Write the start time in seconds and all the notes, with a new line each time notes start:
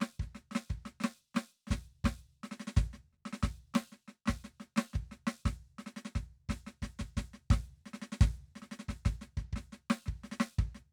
0.01 snare
0.20 kick, snare
0.35 snare
0.52 snare
0.56 snare
0.70 kick, snare
0.86 snare
1.01 snare
1.04 snare
1.35 snare
1.37 snare
1.68 kick, snare
1.72 snare
2.05 kick, snare
2.44 snare
2.52 snare
2.60 snare
2.68 snare
2.77 kick, snare
2.94 snare
3.13 snare
3.26 snare
3.33 snare
3.43 kick, snare
3.75 snare
3.92 snare
4.08 snare
4.26 snare
4.28 kick, snare
4.45 snare
4.61 snare
4.77 snare
4.94 kick, snare
5.12 snare
5.27 snare
5.46 kick, snare
5.79 snare
5.87 snare
5.97 snare
6.05 snare
6.16 kick, snare
6.50 kick, snare
6.67 snare
6.83 kick, snare
7.00 kick, snare
7.17 kick, snare
7.34 snare
7.51 kick, snare
7.86 snare
7.94 snare
8.02 snare
8.13 snare
8.21 kick, snare
8.56 snare
8.62 snare
8.72 snare
8.80 snare
8.89 kick, snare
9.06 kick, snare
9.22 snare
9.38 kick, snare
9.53 kick, snare
9.73 snare
9.91 snare
10.07 kick, snare
10.24 snare
10.32 snare
10.41 snare
10.59 kick, snare
10.75 snare